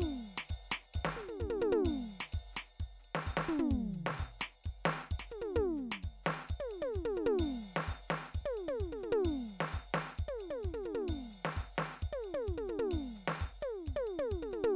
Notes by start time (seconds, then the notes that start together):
0.01 kick, ride bell
0.06 kick
0.23 hi-hat pedal, ride
0.38 snare
0.49 kick, ride bell
0.70 snare, hi-hat pedal
0.94 kick, ride
1.01 kick, snare
1.14 hi-hat pedal, mid tom
1.28 mid tom
1.40 kick, mid tom
1.50 mid tom
1.60 hi-hat pedal, mid tom
1.72 mid tom
1.85 kick, ride bell
2.06 hi-hat pedal, ride
2.20 snare
2.32 kick, ride bell
2.40 kick
2.53 snare, hi-hat pedal
2.80 kick, ride bell
2.99 hi-hat pedal
3.04 ride
3.15 snare
3.27 kick, ride bell
3.37 snare
3.45 floor tom, hi-hat pedal
3.59 floor tom
3.71 kick, ride bell
3.77 kick
3.81 kick
3.93 hi-hat pedal, ride
4.07 snare
4.18 kick, ride bell
4.39 snare, hi-hat pedal
4.64 kick, ride bell
4.84 snare, hi-hat pedal
5.11 kick, ride
5.19 kick, snare
5.30 hi-hat pedal, mid tom
5.55 kick, mid tom
5.77 hi-hat pedal, mid tom
5.92 snare
6.03 kick, ride bell
6.23 snare, hi-hat pedal
6.49 kick, ride
6.60 high tom
6.69 hi-hat pedal, ride
6.82 high tom
6.94 kick, ride bell
7.05 mid tom
7.15 hi-hat pedal, mid tom
7.26 mid tom
7.39 kick, ride
7.62 hi-hat pedal
7.76 snare
7.88 kick, ride bell
8.07 snare, hi-hat pedal
8.34 kick, ride bell
8.41 kick
8.45 high tom
8.53 hi-hat pedal
8.57 ride
8.68 high tom
8.80 kick, ride bell
8.86 kick
8.92 mid tom
9.00 hi-hat pedal, mid tom
9.12 mid tom
9.25 kick, ride bell
9.30 kick
9.45 hi-hat pedal, ride
9.61 snare
9.72 kick, ride bell
9.93 snare, hi-hat pedal
10.18 kick, ride bell
10.28 high tom
10.38 hi-hat pedal, ride
10.50 high tom
10.63 kick, ride bell
10.70 kick, mid tom
10.83 hi-hat pedal, mid tom
10.94 mid tom
11.01 mid tom
11.08 kick, ride bell
11.14 kick
11.30 hi-hat pedal, ride
11.45 snare
11.57 kick, ride bell
11.64 kick
11.75 snare, hi-hat pedal
12.02 kick, ride
12.12 high tom
12.21 hi-hat pedal, ride
12.34 high tom
12.47 kick, ride bell
12.54 kick, mid tom
12.68 hi-hat pedal, mid tom
12.79 mid tom
12.87 mid tom, ride
12.93 kick
13.12 hi-hat pedal, ride
13.28 snare
13.40 kick, ride bell
13.47 kick
13.61 hi-hat pedal, high tom
13.86 kick, ride bell
13.93 kick, high tom
14.06 hi-hat pedal, ride
14.19 high tom
14.31 kick, ride bell
14.42 mid tom
14.51 hi-hat pedal, mid tom
14.64 mid tom